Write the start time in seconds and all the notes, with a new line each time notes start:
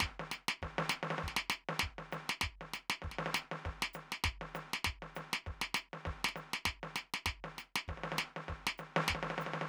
0.01 kick, snare
0.20 snare
0.32 snare, hi-hat pedal
0.49 snare
0.63 kick, snare
0.79 snare
0.90 snare, hi-hat pedal
1.04 snare
1.11 snare
1.19 snare
1.24 kick
1.29 snare
1.37 snare
1.51 snare, hi-hat pedal
1.70 snare
1.80 kick, snare
1.99 snare
2.13 snare, hi-hat pedal
2.30 snare
2.42 kick, snare
2.62 snare
2.74 snare, hi-hat pedal
2.91 snare
3.03 kick, snare
3.12 snare
3.19 snare
3.27 snare
3.35 snare, hi-hat pedal
3.52 snare
3.66 kick, snare
3.83 snare
3.94 snare, hi-hat pedal
4.13 snare
4.25 kick, snare
4.42 snare
4.55 snare, hi-hat pedal
4.74 snare
4.85 kick, snare
5.03 snare
5.16 snare, hi-hat pedal
5.34 snare
5.47 kick, snare
5.62 snare
5.75 snare, hi-hat pedal
5.94 snare
6.06 kick, snare
6.25 snare
6.30 snare
6.36 snare, hi-hat pedal
6.54 snare
6.66 kick, snare
6.84 snare
6.96 snare, hi-hat pedal
7.15 snare
7.27 kick, snare
7.45 snare
7.59 snare, hi-hat pedal
7.76 snare
7.89 kick, snare
7.98 snare
8.04 snare
8.13 snare
8.18 snare, hi-hat pedal
8.37 snare
8.49 kick, snare
8.68 snare
8.78 snare, hi-hat pedal
8.97 snare
9.09 kick, snare
9.16 snare
9.23 snare
9.31 snare
9.39 snare, hi-hat pedal
9.47 snare
9.54 snare
9.62 snare